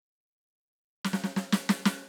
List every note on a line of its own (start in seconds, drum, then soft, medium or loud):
1.05 snare loud
1.05 hi-hat pedal soft
1.13 snare loud
1.24 snare loud
1.36 snare loud
1.52 snare loud
1.52 hi-hat pedal medium
1.69 snare loud
1.86 snare loud